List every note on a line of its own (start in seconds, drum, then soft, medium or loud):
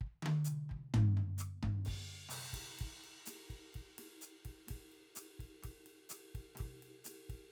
0.01 kick soft
0.07 kick soft
0.23 high tom medium
0.26 high tom loud
0.45 hi-hat pedal medium
0.45 mid tom soft
0.69 kick soft
0.69 mid tom soft
0.76 kick soft
0.94 kick soft
0.94 floor tom loud
1.02 kick soft
1.17 floor tom medium
1.38 cross-stick medium
1.38 snare soft
1.38 hi-hat pedal medium
1.63 kick soft
1.63 floor tom medium
1.70 kick soft
1.85 kick soft
1.85 hi-hat pedal soft
1.85 ride medium
1.94 kick soft
2.29 cross-stick soft
2.29 hi-hat pedal medium
2.29 mid tom soft
2.29 crash medium
2.33 cross-stick soft
2.53 kick soft
2.53 ride medium
2.58 kick soft
2.79 kick soft
2.79 hi-hat pedal soft
2.79 ride medium
2.87 kick soft
3.04 ride soft
3.26 snare soft
3.26 hi-hat pedal medium
3.26 ride medium
3.50 kick soft
3.50 ride soft
3.72 kick soft
3.72 hi-hat pedal soft
3.72 ride soft
3.81 kick soft
3.98 snare soft
3.98 ride medium
4.21 hi-hat pedal medium
4.21 ride soft
4.45 kick soft
4.45 ride soft
4.51 kick soft
4.67 kick soft
4.67 snare soft
4.67 ride medium
4.76 kick soft
4.92 ride soft
5.15 cross-stick soft
5.15 hi-hat pedal medium
5.15 ride medium
5.40 kick soft
5.40 ride soft
5.45 kick soft
5.63 kick soft
5.63 cross-stick soft
5.63 ride medium
5.70 kick soft
5.86 ride soft
6.09 cross-stick soft
6.09 snare soft
6.09 hi-hat pedal medium
6.09 ride medium
6.35 kick soft
6.35 ride soft
6.40 kick soft
6.55 cross-stick soft
6.55 snare soft
6.55 hi-hat pedal soft
6.55 mid tom soft
6.55 ride medium
6.60 kick soft
6.66 kick soft
6.83 ride soft
7.05 snare soft
7.05 hi-hat pedal medium
7.05 crash soft
7.05 ride medium
7.30 kick soft
7.30 ride soft
7.35 kick soft